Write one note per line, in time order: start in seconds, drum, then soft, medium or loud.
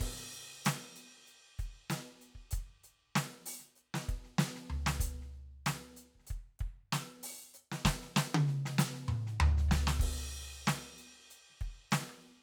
0.01 kick soft
0.01 crash medium
0.07 kick soft
0.18 snare soft
0.24 snare soft
0.28 snare soft
0.31 closed hi-hat soft
0.31 snare soft
0.65 closed hi-hat loud
0.65 snare loud
0.96 closed hi-hat soft
1.16 snare soft
1.22 snare soft
1.22 hi-hat pedal soft
1.26 closed hi-hat soft
1.26 snare soft
1.59 closed hi-hat soft
1.59 kick soft
1.90 open hi-hat medium
1.90 snare loud
1.90 hi-hat pedal soft
2.21 closed hi-hat soft
2.35 kick soft
2.48 snare soft
2.50 closed hi-hat medium
2.50 kick soft
2.50 snare soft
2.59 kick soft
2.84 closed hi-hat soft
3.16 closed hi-hat medium
3.16 snare loud
3.46 open hi-hat loud
3.60 snare soft
3.76 closed hi-hat soft
3.76 hi-hat pedal soft
3.94 snare medium
4.09 kick soft
4.09 closed hi-hat soft
4.15 kick soft
4.18 kick soft
4.24 snare soft
4.39 snare loud
4.56 snare soft
4.70 floor tom loud
4.87 snare loud
5.00 closed hi-hat loud
5.00 kick soft
5.06 kick soft
5.09 kick soft
5.22 snare soft
5.27 snare soft
5.32 snare soft
5.36 closed hi-hat soft
5.66 closed hi-hat medium
5.66 snare loud
5.97 closed hi-hat soft
6.15 kick soft
6.19 snare soft
6.24 closed hi-hat medium
6.24 snare soft
6.29 kick soft
6.29 snare soft
6.60 kick soft
6.60 closed hi-hat soft
6.67 kick soft
6.93 closed hi-hat medium
6.93 snare loud
7.23 open hi-hat loud
7.54 hi-hat pedal medium
7.72 snare medium
7.85 kick soft
7.85 snare loud
7.91 kick soft
8.03 snare soft
8.17 snare loud
8.35 high tom loud
8.48 snare soft
8.66 snare medium
8.79 snare loud
8.79 hi-hat pedal loud
8.94 snare soft
9.08 mid tom loud
9.27 snare soft
9.40 floor tom loud
9.58 snare soft
9.69 kick soft
9.69 snare loud
9.87 snare loud
10.00 kick medium
10.00 crash medium
10.07 kick soft
10.10 kick soft
10.32 open hi-hat soft
10.67 snare loud
10.79 snare soft
10.98 closed hi-hat soft
11.31 closed hi-hat soft
11.50 snare soft
11.54 snare soft
11.61 kick soft
11.61 closed hi-hat soft
11.91 closed hi-hat medium
11.91 snare loud
11.91 hi-hat pedal soft
12.01 cross-stick soft
12.01 snare soft
12.10 cross-stick soft